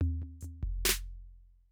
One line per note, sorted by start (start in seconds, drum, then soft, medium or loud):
0.01 closed hi-hat soft
0.01 floor tom loud
0.01 high tom loud
0.22 floor tom medium
0.22 high tom soft
0.41 floor tom medium
0.41 hi-hat pedal medium
0.41 high tom soft
0.63 kick medium
0.85 snare loud
0.89 snare loud